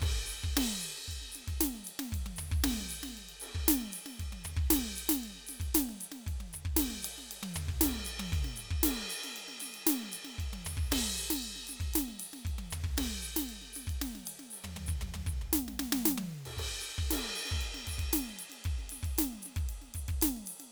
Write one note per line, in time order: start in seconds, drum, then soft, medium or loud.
0.01 kick medium
0.01 hi-hat pedal medium
0.01 crash medium
0.26 hi-hat pedal medium
0.44 kick soft
0.57 snare loud
0.57 crash medium
0.80 hi-hat pedal medium
0.98 snare soft
1.05 kick soft
1.05 hi-hat pedal soft
1.11 ride medium
1.21 snare soft
1.32 snare soft
1.32 hi-hat pedal medium
1.32 ride medium
1.48 kick soft
1.48 ride medium
1.57 hi-hat pedal soft
1.61 snare medium
1.61 ride loud
1.75 snare soft
1.84 hi-hat pedal medium
1.84 ride medium
1.99 snare medium
2.12 kick soft
2.12 ride medium
2.26 high tom medium
2.36 floor tom medium
2.36 hi-hat pedal medium
2.52 kick medium
2.61 kick soft
2.61 snare loud
2.61 crash medium
2.71 snare soft
2.81 snare soft
2.89 hi-hat pedal medium
2.89 ride medium
3.03 snare medium
3.09 snare soft
3.17 ride soft
3.29 ride medium
3.40 snare soft
3.40 hi-hat pedal medium
3.40 ride medium
3.55 kick soft
3.68 snare loud
3.68 ride loud
3.81 snare soft
3.92 hi-hat pedal medium
3.92 ride medium
4.06 snare soft
4.19 kick soft
4.19 ride medium
4.32 high tom soft
4.44 floor tom medium
4.44 hi-hat pedal medium
4.57 kick medium
4.70 snare loud
4.70 crash medium
4.88 snare soft
4.96 hi-hat pedal medium
4.96 ride medium
5.09 snare medium
5.24 ride medium
5.35 snare soft
5.47 snare soft
5.47 hi-hat pedal medium
5.47 ride medium
5.60 kick soft
5.60 ride medium
5.75 snare medium
5.75 ride loud
5.89 snare soft
6.01 hi-hat pedal loud
6.01 ride medium
6.12 snare soft
6.27 kick soft
6.27 ride medium
6.40 high tom soft
6.53 floor tom soft
6.53 hi-hat pedal loud
6.65 kick soft
6.77 snare medium
6.77 crash medium
6.90 snare soft
7.02 hi-hat pedal loud
7.02 ride loud
7.18 snare soft
7.31 ride loud
7.43 high tom medium
7.54 floor tom medium
7.54 hi-hat pedal loud
7.69 kick soft
7.81 snare medium
7.81 ride medium
7.91 snare soft
7.96 snare soft
8.05 hi-hat pedal medium
8.05 ride medium
8.20 high tom medium
8.29 kick medium
8.29 hi-hat pedal soft
8.33 ride medium
8.44 snare soft
8.56 hi-hat pedal medium
8.56 ride medium
8.71 kick medium
8.83 snare medium
8.83 ride loud
9.10 hi-hat pedal loud
9.10 ride medium
9.24 snare soft
9.24 ride medium
9.36 ride medium
9.48 snare soft
9.60 snare soft
9.60 hi-hat pedal loud
9.60 ride medium
9.74 ride medium
9.87 snare medium
9.87 ride medium
10.03 snare soft
10.12 hi-hat pedal loud
10.12 ride medium
10.25 snare soft
10.38 kick soft
10.38 ride medium
10.53 high tom medium
10.65 floor tom medium
10.65 hi-hat pedal loud
10.77 kick medium
10.92 snare medium
10.92 crash loud
11.17 hi-hat pedal medium
11.17 ride soft
11.30 snare medium
11.43 ride medium
11.56 snare soft
11.67 snare soft
11.67 hi-hat pedal loud
11.67 ride medium
11.80 kick soft
11.80 ride soft
11.92 snare medium
11.92 hi-hat pedal soft
11.92 ride medium
12.08 snare soft
12.19 hi-hat pedal loud
12.19 ride medium
12.33 snare soft
12.45 kick soft
12.45 ride medium
12.58 high tom medium
12.71 floor tom medium
12.71 hi-hat pedal medium
12.84 kick medium
12.97 snare medium
12.97 crash medium
13.22 hi-hat pedal medium
13.22 ride soft
13.36 snare medium
13.36 ride medium
13.49 ride medium
13.62 snare soft
13.73 snare soft
13.73 hi-hat pedal medium
13.73 ride medium
13.87 kick soft
13.87 ride medium
14.02 snare medium
14.02 ride medium
14.15 snare soft
14.26 hi-hat pedal medium
14.26 ride loud
14.39 snare soft
14.50 hi-hat pedal medium
14.50 ride soft
14.64 floor tom medium
14.64 high tom medium
14.76 floor tom medium
14.76 high tom medium
14.86 kick soft
14.86 hi-hat pedal loud
15.01 floor tom medium
15.01 high tom medium
15.14 floor tom medium
15.14 high tom medium
15.26 kick medium
15.26 hi-hat pedal medium
15.41 floor tom soft
15.53 snare medium
15.68 snare soft
15.79 snare medium
15.92 snare loud
16.05 snare medium
16.18 high tom medium
16.46 kick soft
16.46 ride medium
16.57 kick soft
16.57 crash medium
16.80 hi-hat pedal medium
16.98 kick medium
17.11 snare medium
17.11 ride loud
17.25 snare soft
17.35 hi-hat pedal medium
17.35 ride medium
17.45 snare soft
17.45 ride medium
17.51 kick soft
17.61 ride medium
17.74 snare soft
17.87 kick soft
17.87 hi-hat pedal medium
17.87 ride medium
17.98 kick soft
17.98 ride medium
18.13 snare medium
18.13 ride loud
18.27 snare soft
18.39 hi-hat pedal medium
18.39 ride medium
18.50 snare soft
18.50 ride medium
18.64 kick medium
18.64 ride medium
18.79 snare soft
18.90 snare soft
18.90 hi-hat pedal medium
18.90 ride medium
19.03 kick soft
19.03 ride medium
19.18 snare medium
19.18 ride medium
19.33 snare soft
19.42 snare soft
19.42 hi-hat pedal medium
19.42 ride medium
19.56 kick medium
19.56 ride medium
19.69 ride medium
19.82 snare soft
19.94 kick soft
19.94 hi-hat pedal medium
19.94 ride medium
20.08 kick soft
20.08 ride medium
20.22 snare medium
20.22 ride loud
20.37 snare soft
20.46 hi-hat pedal medium
20.46 ride medium
20.60 snare soft
20.60 ride medium